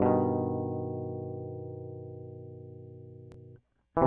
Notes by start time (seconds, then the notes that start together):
0.00 G2 B2
0.06 D#3
0.11 G3
3.97 E3